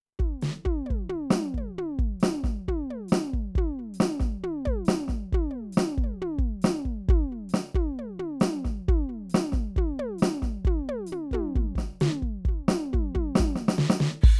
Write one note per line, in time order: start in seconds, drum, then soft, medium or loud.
0.18 kick medium
0.18 floor tom medium
0.41 snare loud
0.41 hi-hat pedal medium
0.64 kick medium
0.64 floor tom loud
0.86 high tom medium
0.90 kick medium
1.09 floor tom loud
1.14 kick soft
1.30 snare loud
1.30 floor tom loud
1.30 hi-hat pedal medium
1.54 kick soft
1.54 high tom medium
1.77 floor tom loud
1.99 kick medium
2.20 snare loud
2.20 floor tom loud
2.20 hi-hat pedal medium
2.43 kick medium
2.43 snare soft
2.68 kick medium
2.68 floor tom loud
2.90 high tom medium
3.08 snare loud
3.08 floor tom loud
3.08 hi-hat pedal medium
3.33 kick medium
3.55 kick medium
3.55 floor tom loud
3.78 floor tom soft
3.94 hi-hat pedal medium
4.00 snare loud
4.00 floor tom loud
4.19 kick medium
4.19 snare medium
4.43 floor tom loud
4.65 kick medium
4.65 high tom loud
4.85 snare loud
4.85 floor tom loud
4.85 hi-hat pedal medium
5.08 kick medium
5.08 snare soft
5.32 kick medium
5.32 floor tom loud
5.50 high tom medium
5.72 hi-hat pedal loud
5.77 snare loud
5.77 floor tom loud
5.97 kick medium
6.03 high tom medium
6.21 floor tom loud
6.38 kick medium
6.62 snare loud
6.62 floor tom loud
6.62 hi-hat pedal medium
6.85 kick soft
7.08 kick loud
7.08 floor tom loud
7.31 floor tom soft
7.49 hi-hat pedal medium
7.54 snare loud
7.74 kick medium
7.74 floor tom loud
7.98 high tom medium
8.19 floor tom loud
8.40 snare loud
8.40 floor tom loud
8.40 hi-hat pedal medium
8.64 kick medium
8.64 snare soft
8.88 kick medium
8.88 floor tom loud
9.08 floor tom soft
9.29 hi-hat pedal medium
9.34 snare loud
9.34 floor tom loud
9.52 kick medium
9.52 snare soft
9.76 kick medium
9.76 floor tom loud
9.99 high tom loud
10.18 snare loud
10.18 floor tom loud
10.18 hi-hat pedal medium
10.42 kick medium
10.42 snare soft
10.65 kick medium
10.65 floor tom loud
10.77 kick soft
10.88 high tom loud
11.06 hi-hat pedal loud
11.11 floor tom loud
11.31 kick soft
11.31 floor tom loud
11.31 mid tom loud
11.55 kick medium
11.55 floor tom medium
11.75 kick medium
11.75 snare medium
12.00 snare loud
12.00 floor tom loud
12.00 hi-hat pedal loud
12.22 kick medium
12.45 kick medium
12.45 floor tom medium
12.68 snare loud
12.68 floor tom loud
12.92 kick medium
12.92 floor tom loud
13.14 kick medium
13.14 floor tom loud
13.35 kick medium
13.35 snare loud
13.35 floor tom loud
13.35 hi-hat pedal medium
13.55 snare medium
13.68 snare loud
13.78 snare loud
13.90 snare loud
14.00 snare loud
14.21 kick loud
14.21 crash loud